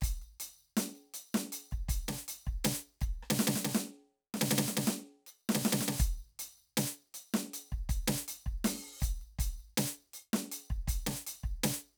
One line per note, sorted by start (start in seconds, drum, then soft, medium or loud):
0.01 closed hi-hat loud
0.01 kick medium
0.01 hi-hat pedal medium
0.22 closed hi-hat soft
0.40 closed hi-hat loud
0.77 closed hi-hat loud
0.77 snare loud
0.95 closed hi-hat soft
1.14 closed hi-hat loud
1.34 snare loud
1.52 closed hi-hat loud
1.71 kick soft
1.71 closed hi-hat soft
1.89 closed hi-hat loud
1.89 kick medium
2.08 snare medium
2.28 closed hi-hat loud
2.45 kick soft
2.45 closed hi-hat soft
2.64 closed hi-hat loud
2.64 snare loud
3.01 kick medium
3.01 hi-hat pedal medium
3.23 cross-stick medium
3.30 snare loud
3.38 snare loud
3.38 hi-hat pedal soft
3.47 snare loud
3.56 snare medium
3.65 snare loud
3.75 snare loud
4.34 snare medium
4.41 snare loud
4.51 snare loud
4.51 hi-hat pedal soft
4.58 snare loud
4.68 snare medium
4.77 snare loud
4.87 snare loud
5.26 hi-hat pedal medium
5.41 closed hi-hat soft
5.49 snare loud
5.55 snare loud
5.65 snare loud
5.72 snare loud
5.81 snare medium
5.88 snare loud
6.00 closed hi-hat loud
6.00 kick medium
6.39 closed hi-hat loud
6.58 closed hi-hat soft
6.77 closed hi-hat loud
6.77 snare loud
7.14 closed hi-hat loud
7.34 snare loud
7.53 closed hi-hat loud
7.70 kick soft
7.70 closed hi-hat soft
7.89 closed hi-hat loud
7.89 kick medium
8.08 snare loud
8.28 closed hi-hat loud
8.46 kick soft
8.64 snare loud
8.64 percussion loud
9.00 closed hi-hat loud
9.00 kick medium
9.00 hi-hat pedal medium
9.21 closed hi-hat soft
9.39 closed hi-hat loud
9.39 kick medium
9.60 closed hi-hat soft
9.77 closed hi-hat loud
9.77 snare loud
10.13 percussion medium
10.33 snare loud
10.52 closed hi-hat loud
10.70 kick soft
10.70 closed hi-hat soft
10.88 closed hi-hat loud
10.88 kick medium
11.06 snare loud
11.27 closed hi-hat loud
11.43 kick soft
11.43 closed hi-hat soft
11.63 snare loud
11.63 percussion loud